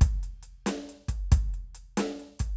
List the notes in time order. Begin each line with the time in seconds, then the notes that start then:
0.01 kick, closed hi-hat
0.23 closed hi-hat
0.43 closed hi-hat
0.66 snare, closed hi-hat
0.89 closed hi-hat
1.08 kick, closed hi-hat
1.32 kick, closed hi-hat
1.54 closed hi-hat
1.75 closed hi-hat
1.97 snare, closed hi-hat
2.20 closed hi-hat
2.39 kick, closed hi-hat